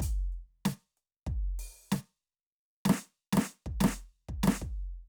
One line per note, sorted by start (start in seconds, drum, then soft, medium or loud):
0.01 closed hi-hat loud
0.01 kick medium
0.33 closed hi-hat soft
0.66 closed hi-hat medium
0.66 snare loud
0.98 closed hi-hat soft
1.28 kick medium
1.28 closed hi-hat soft
1.60 open hi-hat medium
1.93 open hi-hat medium
1.93 snare loud
1.93 hi-hat pedal medium
2.86 snare loud
2.90 snare loud
3.34 snare loud
3.38 snare loud
3.67 kick medium
3.81 snare loud
3.85 snare loud
4.30 kick medium
4.44 snare loud
4.48 snare loud
4.63 kick medium